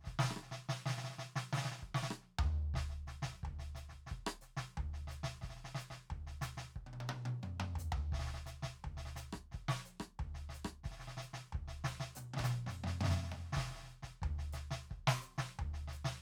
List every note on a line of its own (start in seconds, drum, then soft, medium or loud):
0.01 snare soft
0.04 kick soft
0.04 snare soft
0.20 snare loud
0.24 snare medium
0.30 cross-stick medium
0.30 snare soft
0.37 cross-stick medium
0.40 cross-stick soft
0.40 snare soft
0.47 snare soft
0.52 snare medium
0.62 snare soft
0.69 snare medium
0.86 snare medium
0.90 snare medium
0.95 snare soft
0.98 snare medium
1.04 snare medium
1.11 snare soft
1.19 snare medium
1.36 snare medium
1.53 snare medium
1.57 snare medium
1.62 snare medium
1.65 snare medium
1.72 snare medium
1.79 snare soft
1.83 kick soft
1.95 snare medium
2.03 snare medium
2.11 cross-stick medium
2.18 cross-stick soft
2.22 snare soft
2.39 floor tom loud
2.75 kick medium
2.75 snare medium
2.90 snare soft
3.07 snare soft
3.07 hi-hat pedal soft
3.23 kick soft
3.23 snare medium
3.32 snare soft
3.44 kick soft
3.44 floor tom medium
3.59 snare soft
3.75 snare soft
3.75 hi-hat pedal soft
3.89 kick soft
3.89 snare soft
4.07 snare soft
4.12 kick soft
4.27 cross-stick medium
4.42 snare soft
4.42 hi-hat pedal soft
4.57 kick soft
4.57 snare medium
4.78 kick soft
4.78 floor tom medium
4.94 snare soft
5.08 snare soft
5.08 hi-hat pedal soft
5.24 kick soft
5.24 snare medium
5.42 kick soft
5.42 snare soft
5.50 snare soft
5.56 snare soft
5.65 snare soft
5.75 snare medium
5.80 hi-hat pedal medium
5.91 kick soft
5.91 snare soft
6.11 kick soft
6.11 floor tom medium
6.27 snare soft
6.42 snare medium
6.42 hi-hat pedal medium
6.58 snare medium
6.76 kick soft
6.76 high tom soft
6.87 high tom medium
6.94 high tom medium
7.01 high tom medium
7.10 high tom loud
7.26 high tom medium
7.43 hi-hat pedal soft
7.43 mid tom medium
7.60 mid tom loud
7.76 floor tom medium
7.76 hi-hat pedal medium
7.93 floor tom loud
8.13 kick medium
8.13 snare soft
8.20 snare medium
8.24 snare soft
8.27 snare soft
8.46 snare soft
8.46 hi-hat pedal medium
8.63 kick soft
8.63 snare medium
8.85 kick soft
8.85 floor tom medium
8.98 snare soft
9.06 snare soft
9.16 snare soft
9.16 hi-hat pedal medium
9.33 kick soft
9.33 cross-stick medium
9.52 kick soft
9.52 snare soft
9.69 snare medium
9.85 snare soft
9.85 hi-hat pedal medium
10.00 kick soft
10.00 cross-stick medium
10.20 kick soft
10.20 floor tom medium
10.35 snare soft
10.50 snare soft
10.55 hi-hat pedal medium
10.65 kick soft
10.65 cross-stick medium
10.84 kick soft
10.84 snare soft
10.92 snare soft
10.97 snare soft
11.00 snare soft
11.08 snare soft
11.18 snare medium
11.23 hi-hat pedal medium
11.34 kick soft
11.34 snare medium
11.53 kick soft
11.53 floor tom medium
11.68 snare soft
11.85 snare medium
11.85 hi-hat pedal medium
12.00 snare medium
12.16 hi-hat pedal loud
12.16 high tom medium
12.34 snare medium
12.34 high tom loud
12.40 kick soft
12.40 high tom medium
12.44 snare medium
12.44 hi-hat pedal medium
12.44 high tom medium
12.50 snare soft
12.50 high tom soft
12.67 snare soft
12.67 hi-hat pedal soft
12.67 mid tom medium
12.84 snare medium
12.84 mid tom loud
13.01 snare medium
13.01 mid tom loud
13.06 mid tom medium
13.11 snare medium
13.11 hi-hat pedal medium
13.11 mid tom soft
13.17 snare soft
13.23 snare soft
13.28 snare soft
13.31 snare soft
13.31 mid tom medium
13.35 snare soft
13.40 snare soft
13.45 snare soft
13.49 snare soft
13.53 kick medium
13.53 snare medium
13.57 snare medium
13.61 snare medium
13.65 snare soft
13.72 snare soft
13.76 snare soft
13.79 snare soft
13.84 snare soft
13.90 snare soft
13.90 hi-hat pedal soft
14.03 kick soft
14.03 snare soft
14.22 kick soft
14.22 floor tom loud
14.39 snare soft
14.53 snare soft
14.53 hi-hat pedal medium
14.71 kick soft
14.71 snare medium
14.90 kick soft
14.90 snare soft
15.08 snare loud
15.22 snare soft
15.22 hi-hat pedal medium
15.38 kick soft
15.38 snare medium
15.59 kick soft
15.59 floor tom medium
15.74 snare soft
15.88 snare soft
15.93 hi-hat pedal medium
16.05 snare medium